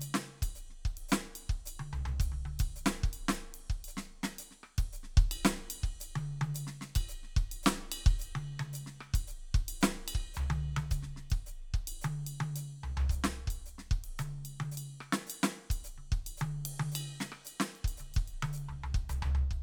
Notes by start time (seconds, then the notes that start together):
0.01 hi-hat pedal, ride bell
0.15 snare
0.42 kick, ride bell
0.56 hi-hat pedal
0.70 snare
0.85 kick
0.97 ride
1.09 snare, hi-hat pedal
1.36 ride bell
1.50 kick
1.66 hi-hat pedal, ride bell
1.80 high tom
1.93 floor tom
2.06 floor tom
2.20 kick, hi-hat pedal, ride
2.32 high tom
2.46 high tom
2.60 kick, ride bell
2.76 hi-hat pedal
2.86 snare
3.04 kick
3.13 ride bell
3.29 snare, hi-hat pedal
3.54 ride
3.70 kick
3.85 hi-hat pedal, ride bell
3.97 snare
4.24 snare
4.39 hi-hat pedal, ride bell
4.51 snare
4.64 cross-stick
4.78 kick, ride
4.93 hi-hat pedal
5.04 snare
5.17 kick
5.32 ride bell
5.45 snare, hi-hat pedal
5.55 snare
5.71 ride bell
5.84 kick
6.01 hi-hat pedal, ride bell
6.16 high tom
6.42 high tom
6.55 hi-hat pedal, ride bell
6.67 snare
6.81 snare
6.96 kick, ride bell
7.09 hi-hat pedal
7.24 snare
7.37 kick
7.52 ride bell
7.63 snare, hi-hat pedal
7.92 ride bell
8.06 kick
8.19 hi-hat pedal, ride bell
8.36 high tom
8.60 high tom
8.73 hi-hat pedal, ride bell
8.87 snare
9.01 cross-stick
9.14 kick, ride bell
9.28 hi-hat pedal
9.55 kick
9.69 ride bell
9.81 snare, hi-hat pedal
10.08 ride bell
10.15 kick
10.34 floor tom, hi-hat pedal
10.50 high tom
10.77 high tom
10.91 kick, hi-hat pedal, ride bell
11.03 snare
11.17 snare
11.31 kick, ride bell
11.47 hi-hat pedal
11.62 snare
11.74 kick
11.88 ride bell
12.02 hi-hat pedal, high tom
12.27 ride bell
12.41 high tom
12.56 hi-hat pedal, ride bell
12.84 floor tom
12.97 floor tom
13.10 kick, snare, hi-hat pedal, ride, floor tom
13.24 snare
13.48 kick, ride bell
13.66 hi-hat pedal
13.79 snare
13.91 kick
14.04 ride
14.19 hi-hat pedal, high tom
14.45 ride bell
14.60 high tom
14.72 hi-hat pedal
14.78 ride bell
15.01 cross-stick
15.13 snare
15.27 hi-hat pedal, ride bell
15.44 snare
15.71 kick, ride bell
15.84 hi-hat pedal
15.98 high tom
16.12 kick
16.27 ride bell
16.38 hi-hat pedal, high tom
16.66 ride
16.80 high tom
16.92 hi-hat pedal, ride bell
17.21 snare
17.32 cross-stick
17.45 hi-hat pedal, ride bell
17.60 snare
17.76 ride
17.85 kick, ride bell
17.98 hi-hat pedal, high tom
18.14 kick, ride bell
18.28 ride bell
18.43 high tom
18.53 hi-hat pedal
18.58 ride
18.69 floor tom
18.84 floor tom
18.95 kick
19.10 floor tom, hi-hat pedal
19.23 floor tom
19.35 floor tom
19.51 kick